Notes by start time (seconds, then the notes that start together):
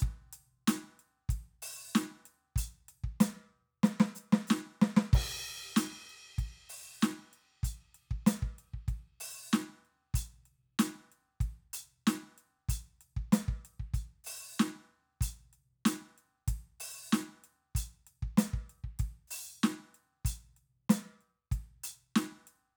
0.01 kick, hi-hat pedal
0.34 closed hi-hat
0.68 closed hi-hat, snare
1.00 closed hi-hat
1.30 kick, closed hi-hat
1.63 open hi-hat
1.96 snare, hi-hat pedal, open hi-hat
2.26 closed hi-hat
2.57 closed hi-hat, kick
2.89 closed hi-hat
3.05 kick
3.21 closed hi-hat, snare
3.84 snare, hi-hat pedal
4.01 snare
4.16 hi-hat pedal
4.33 snare
4.48 snare, hi-hat pedal
4.83 snare
4.98 snare
5.14 kick, crash
5.77 closed hi-hat, snare
6.10 closed hi-hat
6.39 kick, closed hi-hat
6.70 open hi-hat
7.02 snare, closed hi-hat, hi-hat pedal
7.34 closed hi-hat
7.64 closed hi-hat, kick
7.95 closed hi-hat
8.12 kick
8.27 closed hi-hat, snare
8.43 kick
8.59 closed hi-hat
8.74 kick
8.89 kick, closed hi-hat
9.21 open hi-hat
9.54 open hi-hat, snare, hi-hat pedal
9.86 closed hi-hat
10.15 closed hi-hat, kick
10.46 closed hi-hat
10.80 closed hi-hat, snare
11.13 closed hi-hat
11.41 kick, closed hi-hat
11.74 open hi-hat
12.08 snare, hi-hat pedal, open hi-hat
12.39 closed hi-hat
12.70 closed hi-hat, kick
13.02 closed hi-hat
13.17 kick
13.33 closed hi-hat, snare
13.49 kick
13.66 closed hi-hat
13.81 kick
13.95 closed hi-hat, kick
14.25 open hi-hat, hi-hat pedal
14.60 snare, hi-hat pedal
15.22 closed hi-hat, kick
15.54 closed hi-hat
15.86 closed hi-hat, snare
16.19 closed hi-hat
16.49 kick, closed hi-hat
16.81 open hi-hat
17.13 open hi-hat, snare, hi-hat pedal
17.45 closed hi-hat
17.76 closed hi-hat, kick
18.08 closed hi-hat
18.23 kick
18.38 closed hi-hat, snare
18.54 kick
18.70 closed hi-hat
18.85 kick
19.00 kick, closed hi-hat
19.28 open hi-hat, hi-hat pedal
19.64 snare, hi-hat pedal
19.95 closed hi-hat
20.26 closed hi-hat, kick
20.57 closed hi-hat
20.90 closed hi-hat, snare
21.22 closed hi-hat
21.52 kick, closed hi-hat
21.84 open hi-hat
22.17 open hi-hat, snare, hi-hat pedal
22.48 closed hi-hat